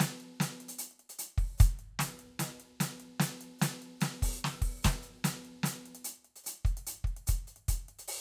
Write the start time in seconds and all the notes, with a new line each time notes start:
0.01 closed hi-hat, snare
0.21 closed hi-hat
0.41 closed hi-hat, snare
0.61 closed hi-hat
0.69 closed hi-hat
0.79 closed hi-hat
0.92 closed hi-hat
1.00 closed hi-hat
1.10 closed hi-hat
1.18 closed hi-hat, hi-hat pedal
1.39 kick, open hi-hat
1.59 closed hi-hat, kick, hi-hat pedal
1.80 closed hi-hat
2.00 closed hi-hat, snare
2.20 closed hi-hat
2.40 closed hi-hat, snare
2.61 closed hi-hat
2.81 closed hi-hat, snare
3.01 closed hi-hat
3.21 closed hi-hat, snare
3.42 closed hi-hat
3.60 closed hi-hat, snare, hi-hat pedal
3.83 closed hi-hat
4.02 closed hi-hat, snare
4.23 open hi-hat, kick
4.39 hi-hat pedal
4.45 snare
4.62 kick, open hi-hat
4.83 closed hi-hat, kick, snare, hi-hat pedal
5.03 closed hi-hat
5.25 closed hi-hat, snare
5.46 closed hi-hat
5.64 closed hi-hat, snare
5.87 closed hi-hat
5.96 closed hi-hat
6.05 closed hi-hat
6.26 closed hi-hat
6.37 closed hi-hat
6.45 closed hi-hat, hi-hat pedal
6.66 closed hi-hat, kick
6.78 closed hi-hat
6.88 closed hi-hat
7.05 kick, closed hi-hat
7.17 closed hi-hat
7.27 closed hi-hat, kick, hi-hat pedal
7.48 closed hi-hat
7.57 closed hi-hat
7.69 open hi-hat, kick
7.89 closed hi-hat
8.00 closed hi-hat
8.09 open hi-hat